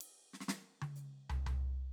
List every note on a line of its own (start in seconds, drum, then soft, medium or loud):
0.01 ride medium
0.33 snare soft
0.40 snare soft
0.48 snare medium
0.82 high tom medium
0.96 hi-hat pedal soft
1.29 floor tom medium
1.46 floor tom medium